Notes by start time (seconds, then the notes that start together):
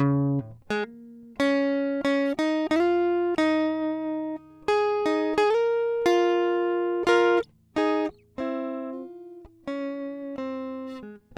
0.00 C#3
0.40 A2
0.71 G#3
0.82 A#3
1.37 G#3 C#4
2.06 C#4
2.39 D#4
2.72 D#4
2.81 F4
3.39 D#4
4.69 G#4
5.06 D#4
5.38 G#4
5.51 A#4
6.06 F4
7.08 F4 A#4
7.77 D#4 G#4
8.39 C4 E4
8.94 F4
9.68 C#4
10.37 C4